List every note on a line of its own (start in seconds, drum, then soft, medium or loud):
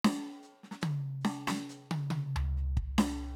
0.04 snare loud
0.43 hi-hat pedal soft
0.63 snare soft
0.71 snare soft
0.81 hi-hat pedal medium
0.81 high tom loud
1.21 snare loud
1.21 hi-hat pedal soft
1.47 snare loud
1.69 hi-hat pedal medium
1.91 high tom loud
2.10 high tom loud
2.36 floor tom loud
2.57 snare soft
2.77 kick soft
2.98 open hi-hat loud
2.98 snare loud